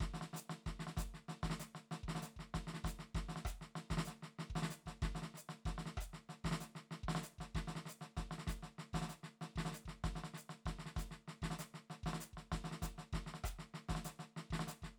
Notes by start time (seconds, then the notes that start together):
0.01 kick, snare
0.14 snare
0.22 snare
0.34 snare, hi-hat pedal
0.50 snare
0.67 kick, snare
0.80 snare
0.88 snare
0.97 kick, snare, hi-hat pedal
1.15 snare
1.29 snare
1.44 kick, snare
1.51 snare
1.60 snare, hi-hat pedal
1.76 snare
1.92 snare
2.04 kick
2.09 snare
2.16 snare
2.23 snare, hi-hat pedal
2.37 kick, snare
2.55 kick, snare
2.68 snare
2.74 snare
2.85 kick, snare, hi-hat pedal
3.00 snare
3.15 kick, snare
3.29 snare
3.36 snare
3.46 kick, cross-stick, hi-hat pedal
3.62 snare
3.76 snare
3.91 kick, snare
3.98 snare
4.06 snare, hi-hat pedal
4.23 snare
4.39 snare
4.51 kick
4.56 snare
4.63 snare
4.70 snare, hi-hat pedal
4.87 kick, snare
5.03 kick, snare
5.16 snare
5.23 snare
5.35 snare, hi-hat pedal
5.50 snare
5.66 kick, snare
5.79 snare
5.86 snare
5.98 kick, cross-stick, hi-hat pedal
6.14 snare
6.30 snare
6.45 kick, snare
6.52 snare
6.61 snare, hi-hat pedal
6.76 snare
6.92 snare
7.04 kick
7.09 snare
7.16 snare
7.22 snare, hi-hat pedal
7.39 kick, snare
7.55 kick, snare
7.68 snare
7.76 snare
7.90 hi-hat pedal
8.02 snare
8.17 kick, snare
8.32 snare
8.39 snare
8.48 kick, snare, hi-hat pedal
8.63 snare
8.79 snare
8.94 kick, snare
9.02 snare
9.10 snare, hi-hat pedal
9.24 snare
9.42 snare
9.56 kick, snare
9.66 snare
9.72 snare, hi-hat pedal
9.86 kick, snare
10.05 kick, snare
10.16 snare
10.24 snare
10.38 hi-hat pedal
10.50 snare
10.66 kick, snare
10.79 snare
10.86 snare
10.93 kick, snare
10.97 snare, hi-hat pedal
11.12 snare
11.28 snare
11.43 kick, snare
11.51 snare
11.60 snare, hi-hat pedal
11.75 snare
11.91 snare
12.04 kick, snare
12.14 snare
12.20 snare, hi-hat pedal
12.34 kick
12.38 snare
12.52 kick, snare
12.65 snare
12.72 snare
12.83 kick, snare, hi-hat pedal
12.99 snare
13.13 kick, snare
13.27 snare
13.35 snare
13.45 kick, cross-stick, hi-hat pedal
13.59 snare
13.75 snare
13.89 kick, snare
13.96 snare
14.05 snare, hi-hat pedal
14.20 snare
14.37 snare
14.51 kick, snare
14.60 snare
14.68 snare, hi-hat pedal
14.83 kick, snare